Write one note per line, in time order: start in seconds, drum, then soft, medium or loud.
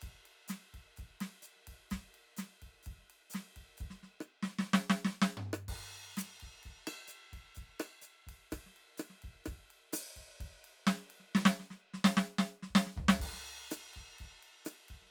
0.01 kick soft
0.01 hi-hat pedal soft
0.01 ride medium
0.08 kick soft
0.26 ride soft
0.48 snare medium
0.48 hi-hat pedal medium
0.48 ride medium
0.74 kick soft
0.74 ride soft
0.78 snare soft
0.96 kick soft
0.96 hi-hat pedal soft
0.96 ride soft
1.04 kick soft
1.21 snare medium
1.21 ride medium
1.42 hi-hat pedal medium
1.56 snare soft
1.67 kick soft
1.67 ride medium
1.90 kick soft
1.90 snare medium
1.90 hi-hat pedal soft
1.90 ride medium
2.14 ride soft
2.37 snare medium
2.37 hi-hat pedal medium
2.37 ride medium
2.62 kick soft
2.62 ride soft
2.83 kick soft
2.83 hi-hat pedal soft
2.83 ride medium
2.92 kick soft
2.99 snare soft
3.03 snare soft
3.10 ride soft
3.30 hi-hat pedal medium
3.30 ride medium
3.35 snare medium
3.56 kick soft
3.56 ride soft
3.62 snare soft
3.77 kick soft
3.77 hi-hat pedal soft
3.77 ride medium
3.86 kick soft
3.90 snare soft
4.03 snare soft
4.21 cross-stick medium
4.43 snare medium
4.59 snare loud
4.74 snare loud
4.90 snare loud
5.05 snare loud
5.22 snare loud
5.37 mid tom medium
5.53 cross-stick medium
5.68 kick soft
5.68 crash medium
6.17 snare medium
6.17 hi-hat pedal loud
6.17 ride medium
6.40 kick soft
6.40 snare soft
6.40 ride soft
6.63 kick soft
6.63 hi-hat pedal soft
6.63 ride soft
6.70 kick soft
6.87 cross-stick medium
6.87 ride bell loud
7.08 hi-hat pedal medium
7.08 ride soft
7.33 kick soft
7.33 ride soft
7.38 kick soft
7.55 kick soft
7.55 hi-hat pedal soft
7.55 ride soft
7.63 kick soft
7.80 cross-stick medium
7.80 ride bell medium
8.02 hi-hat pedal medium
8.02 ride soft
8.27 kick soft
8.27 ride medium
8.51 kick soft
8.51 cross-stick medium
8.51 hi-hat pedal soft
8.51 ride medium
8.57 kick soft
8.66 snare soft
8.76 ride soft
8.98 cross-stick medium
8.98 hi-hat pedal medium
8.98 ride medium
9.10 snare soft
9.22 kick soft
9.22 ride soft
9.29 kick soft
9.44 kick soft
9.44 cross-stick medium
9.44 hi-hat pedal soft
9.44 ride medium
9.53 kick soft
9.71 ride soft
9.93 cross-stick medium
9.93 hi-hat pedal loud
9.93 ride medium
10.16 kick soft
10.16 ride soft
10.40 kick soft
10.40 ride medium
10.46 kick soft
10.64 ride medium
10.87 snare loud
10.87 ride medium
10.97 snare soft
11.10 ride medium
11.20 snare soft
11.35 snare loud
11.45 snare loud
11.60 snare soft
11.71 snare soft
11.94 snare medium
12.05 snare loud
12.17 snare loud
12.39 snare medium
12.63 snare medium
12.70 kick soft
12.75 snare loud
12.87 snare soft
12.97 kick soft
12.97 floor tom medium
13.03 kick soft
13.09 snare loud
13.20 kick soft
13.20 crash medium
13.27 kick soft
13.33 snare soft
13.71 cross-stick medium
13.71 hi-hat pedal medium
13.71 ride medium
13.94 kick soft
13.94 ride soft
14.18 kick soft
14.18 hi-hat pedal soft
14.18 ride soft
14.25 kick soft
14.43 ride soft
14.65 cross-stick medium
14.65 hi-hat pedal medium
14.65 ride medium
14.89 kick soft
14.89 ride soft
15.02 snare soft
15.06 snare soft